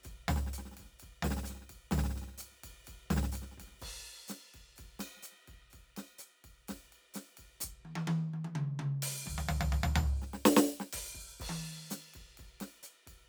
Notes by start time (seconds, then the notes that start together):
0.01 snare, hi-hat pedal
0.05 kick, ride
0.11 kick
0.29 snare, floor tom
0.37 snare
0.47 snare
0.53 hi-hat pedal, ride
0.58 snare
0.66 snare
0.72 snare
0.77 kick, snare, ride
0.81 snare
0.85 kick, snare
0.91 snare
0.94 snare
0.99 kick, snare, hi-hat pedal, ride
1.23 snare, floor tom
1.31 snare
1.37 snare
1.44 snare, hi-hat pedal
1.48 snare, ride bell
1.55 snare
1.61 snare
1.70 kick, ride
1.75 kick
1.91 kick, snare, floor tom, hi-hat pedal
1.98 snare
2.04 snare
2.10 snare
2.16 snare, ride bell
2.22 snare
2.28 snare
2.33 snare
2.37 snare, hi-hat pedal, ride
2.42 snare
2.51 snare
2.64 kick, ride
2.69 kick
2.85 kick, hi-hat pedal, ride
2.93 kick
3.11 snare, floor tom
3.17 snare
3.23 snare
3.32 snare, hi-hat pedal, ride
3.42 snare
3.52 snare
3.58 kick, snare, ride
3.63 kick, snare
3.73 snare
3.77 snare, hi-hat pedal
3.81 kick, snare, crash
3.88 kick
4.28 snare, hi-hat pedal, ride
4.54 kick, ride
4.60 kick
4.76 kick, hi-hat pedal, ride
4.84 kick
5.00 snare, ride bell
5.17 snare
5.23 hi-hat pedal, ride
5.32 snare
5.48 kick, ride
5.53 kick
5.70 kick, hi-hat pedal, ride
5.79 kick
5.97 snare, ride bell
6.19 hi-hat pedal, ride
6.44 kick, ride
6.49 kick
6.68 kick, snare, hi-hat pedal, ride
6.75 kick
6.93 ride
7.14 snare, hi-hat pedal, ride
7.38 kick, ride
7.61 kick, hi-hat pedal
7.85 high tom
7.96 high tom
8.08 high tom
8.34 high tom
8.45 high tom
8.56 mid tom
8.80 mid tom
9.03 closed hi-hat
9.26 kick, floor tom
9.32 kick
9.38 floor tom
9.49 floor tom
9.61 floor tom
9.73 floor tom
9.84 floor tom
9.96 floor tom
10.22 snare
10.34 snare
10.46 snare
10.57 snare
10.80 snare
10.93 kick, closed hi-hat
11.15 kick
11.20 kick
11.40 kick, crash
11.47 kick, high tom
11.91 snare, hi-hat pedal, ride
12.14 kick, ride
12.21 kick
12.38 kick, ride
12.61 snare, ride
12.83 hi-hat pedal, ride
13.07 kick, ride
13.12 kick